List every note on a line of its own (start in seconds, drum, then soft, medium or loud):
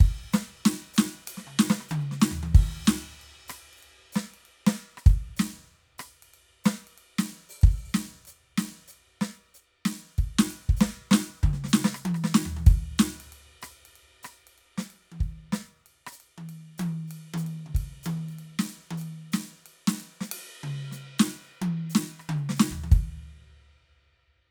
0.01 kick loud
0.01 ride soft
0.33 snare loud
0.33 hi-hat pedal medium
0.33 ride medium
0.66 snare loud
0.66 ride medium
0.94 hi-hat pedal medium
0.94 ride medium
0.99 snare loud
1.28 hi-hat pedal medium
1.28 ride loud
1.38 snare soft
1.48 mid tom soft
1.60 snare loud
1.60 hi-hat pedal medium
1.71 snare loud
1.81 cross-stick soft
1.89 hi-hat pedal medium
1.89 mid tom loud
2.00 cross-stick soft
2.12 snare soft
2.20 snare loud
2.20 hi-hat pedal soft
2.32 floor tom medium
2.44 high tom medium
2.55 kick loud
2.55 crash medium
2.86 snare loud
2.86 hi-hat pedal medium
2.86 ride medium
3.22 ride soft
3.49 cross-stick medium
3.49 hi-hat pedal medium
3.49 ride medium
3.74 hi-hat pedal soft
3.74 ride soft
3.83 ride soft
4.13 snare medium
4.13 hi-hat pedal medium
4.13 ride soft
4.34 ride soft
4.46 ride soft
4.67 snare loud
4.67 hi-hat pedal soft
4.98 cross-stick medium
5.07 kick loud
5.07 hi-hat pedal soft
5.07 ride soft
5.37 snare loud
5.37 hi-hat pedal medium
5.99 cross-stick medium
5.99 hi-hat pedal medium
5.99 ride soft
6.23 ride soft
6.34 ride soft
6.65 snare loud
6.65 hi-hat pedal medium
6.65 ride medium
6.88 ride soft
6.98 ride soft
7.19 snare loud
7.19 hi-hat pedal soft
7.30 ride soft
7.50 open hi-hat medium
7.62 kick loud
7.62 ride soft
7.93 snare loud
7.93 hi-hat pedal soft
8.26 hi-hat pedal medium
8.26 ride soft
8.58 snare loud
8.58 ride medium
8.88 hi-hat pedal medium
8.88 ride soft
9.22 snare medium
9.22 ride soft
9.55 hi-hat pedal soft
9.86 snare medium
9.86 ride soft
10.19 kick medium
10.19 ride soft
10.39 snare loud
10.49 hi-hat pedal soft
10.49 ride medium
10.70 kick medium
10.77 hi-hat pedal medium
10.81 snare loud
11.12 snare loud
11.14 snare loud
11.44 kick medium
11.44 mid tom loud
11.54 snare soft
11.65 snare medium
11.69 hi-hat pedal medium
11.74 snare loud
11.85 snare loud
11.95 cross-stick medium
11.95 hi-hat pedal medium
12.06 high tom loud
12.15 cross-stick medium
12.25 snare medium
12.35 snare loud
12.46 floor tom medium
12.57 high tom medium
12.67 kick loud
12.67 ride medium
12.99 snare loud
12.99 hi-hat pedal medium
12.99 ride medium
13.21 ride medium
13.33 ride soft
13.62 cross-stick medium
13.62 hi-hat pedal medium
13.62 ride medium
13.86 ride soft
13.96 ride soft
14.24 cross-stick medium
14.24 hi-hat pedal medium
14.24 ride soft
14.48 ride soft
14.59 ride soft
14.78 snare medium
14.78 hi-hat pedal medium
14.91 ride soft
15.12 high tom medium
15.21 kick medium
15.21 ride soft
15.53 snare medium
15.53 hi-hat pedal medium
15.87 ride soft
16.07 cross-stick medium
16.13 hi-hat pedal medium
16.21 ride soft
16.38 high tom medium
16.50 ride soft
16.79 hi-hat pedal medium
16.79 high tom loud
16.79 ride soft
17.08 hi-hat pedal soft
17.08 ride medium
17.34 hi-hat pedal medium
17.34 high tom loud
17.47 ride soft
17.67 mid tom medium
17.75 kick medium
17.75 ride medium
18.04 hi-hat pedal medium
18.04 high tom loud
18.04 ride soft
18.29 hi-hat pedal soft
18.29 ride soft
18.39 ride soft
18.60 snare medium
18.60 hi-hat pedal medium
18.70 ride soft
18.91 high tom medium
18.98 hi-hat pedal medium
19.02 ride soft
19.33 snare medium
19.33 hi-hat pedal medium
19.33 ride soft
19.67 ride medium
19.88 snare loud
19.88 hi-hat pedal soft
20.01 ride soft
20.21 snare medium
20.21 hi-hat pedal medium
20.32 ride loud
20.53 cross-stick soft
20.64 mid tom loud
20.92 snare soft
20.92 hi-hat pedal medium
21.19 snare loud
21.19 hi-hat pedal medium
21.62 high tom loud
21.90 hi-hat pedal medium
21.96 snare loud
22.20 cross-stick soft
22.30 mid tom loud
22.37 cross-stick soft
22.50 snare medium
22.57 snare loud
22.57 hi-hat pedal medium
22.71 kick soft
22.71 floor tom medium
22.84 high tom medium
22.92 kick loud
22.92 ride medium